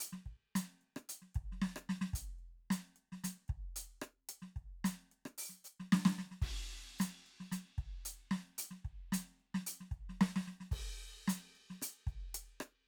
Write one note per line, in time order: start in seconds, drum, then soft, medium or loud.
0.01 closed hi-hat loud
0.13 snare soft
0.26 kick soft
0.26 closed hi-hat soft
0.56 closed hi-hat loud
0.56 snare medium
0.82 closed hi-hat soft
0.97 cross-stick medium
1.10 closed hi-hat loud
1.22 snare soft
1.35 kick soft
1.35 closed hi-hat soft
1.52 snare soft
1.62 snare medium
1.76 cross-stick medium
1.90 snare medium
2.02 snare medium
2.14 closed hi-hat medium
2.14 kick soft
2.39 closed hi-hat soft
2.71 closed hi-hat medium
2.71 snare medium
2.96 closed hi-hat soft
3.13 snare soft
3.24 closed hi-hat loud
3.24 snare medium
3.49 kick soft
3.49 closed hi-hat soft
3.76 closed hi-hat loud
4.02 cross-stick medium
4.29 closed hi-hat loud
4.42 snare soft
4.56 kick soft
4.56 closed hi-hat soft
4.85 closed hi-hat medium
4.85 snare medium
5.12 closed hi-hat soft
5.26 cross-stick medium
5.39 open hi-hat loud
5.50 snare soft
5.65 hi-hat pedal medium
5.80 snare soft
5.93 snare loud
6.06 snare loud
6.19 snare medium
6.32 snare soft
6.42 kick medium
6.42 ride medium
6.99 closed hi-hat loud
6.99 snare medium
6.99 hi-hat pedal medium
7.27 closed hi-hat soft
7.41 snare soft
7.52 closed hi-hat medium
7.52 snare medium
7.78 kick soft
7.78 closed hi-hat soft
8.06 closed hi-hat loud
8.31 snare medium
8.59 closed hi-hat loud
8.71 snare soft
8.85 kick soft
8.85 closed hi-hat soft
9.13 closed hi-hat loud
9.13 snare medium
9.40 closed hi-hat soft
9.55 snare medium
9.67 closed hi-hat loud
9.81 snare soft
9.92 kick soft
9.92 closed hi-hat soft
10.10 snare soft
10.21 snare loud
10.36 snare medium
10.48 snare soft
10.61 snare soft
10.72 kick soft
10.72 crash medium
10.99 closed hi-hat soft
11.28 closed hi-hat loud
11.28 snare medium
11.56 closed hi-hat soft
11.70 snare soft
11.82 closed hi-hat loud
11.82 cross-stick medium
12.07 kick soft
12.07 closed hi-hat soft
12.35 closed hi-hat loud
12.61 cross-stick medium